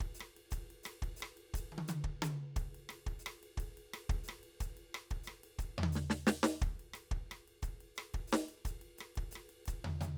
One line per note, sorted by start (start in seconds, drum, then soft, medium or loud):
0.01 kick medium
0.01 ride soft
0.15 hi-hat pedal medium
0.20 cross-stick medium
0.20 ride soft
0.37 ride soft
0.51 kick medium
0.51 hi-hat pedal medium
0.51 ride soft
0.71 ride soft
0.84 cross-stick medium
0.84 hi-hat pedal soft
0.84 ride medium
1.03 kick medium
1.03 ride soft
1.17 hi-hat pedal medium
1.21 cross-stick medium
1.21 ride soft
1.38 ride soft
1.54 kick medium
1.54 hi-hat pedal medium
1.54 ride medium
1.73 high tom medium
1.79 high tom medium
1.88 hi-hat pedal medium
1.88 high tom medium
2.05 kick medium
2.23 hi-hat pedal medium
2.23 high tom loud
2.57 kick medium
2.57 hi-hat pedal soft
2.57 ride soft
2.75 ride soft
2.90 cross-stick medium
2.90 ride soft
3.07 kick medium
3.07 ride soft
3.20 hi-hat pedal soft
3.27 cross-stick medium
3.27 ride medium
3.44 ride soft
3.58 kick medium
3.58 hi-hat pedal soft
3.58 ride soft
3.78 ride soft
3.94 cross-stick medium
3.94 ride medium
4.10 kick medium
4.10 ride soft
4.24 hi-hat pedal soft
4.29 cross-stick medium
4.29 ride medium
4.44 ride soft
4.61 kick medium
4.61 hi-hat pedal medium
4.61 ride soft
4.78 ride soft
4.95 cross-stick medium
4.95 ride soft
5.11 kick medium
5.11 ride soft
5.24 hi-hat pedal soft
5.28 cross-stick medium
5.28 ride soft
5.44 ride soft
5.59 kick medium
5.59 hi-hat pedal soft
5.59 ride soft
5.79 floor tom loud
5.84 high tom loud
5.93 snare medium
5.93 hi-hat pedal medium
6.11 snare medium
6.27 snare loud
6.27 hi-hat pedal soft
6.44 snare loud
6.61 kick medium
6.61 hi-hat pedal soft
6.61 ride soft
6.80 ride soft
6.94 cross-stick medium
6.94 hi-hat pedal soft
6.94 ride soft
7.12 kick medium
7.32 cross-stick medium
7.32 ride soft
7.48 ride soft
7.63 kick medium
7.63 hi-hat pedal soft
7.63 ride soft
7.81 ride soft
7.96 cross-stick medium
7.96 hi-hat pedal soft
7.96 ride soft
8.15 kick medium
8.15 ride soft
8.28 hi-hat pedal soft
8.33 snare medium
8.33 ride soft
8.49 ride soft
8.66 kick medium
8.66 hi-hat pedal medium
8.66 ride soft
8.82 ride soft
8.99 cross-stick medium
8.99 hi-hat pedal soft
8.99 ride soft
9.16 kick medium
9.16 ride soft
9.32 hi-hat pedal medium
9.32 ride medium
9.36 cross-stick medium
9.50 ride soft
9.66 kick medium
9.66 hi-hat pedal medium
9.66 ride soft
9.85 floor tom medium
9.85 high tom medium
10.01 floor tom medium
10.01 hi-hat pedal medium
10.01 high tom medium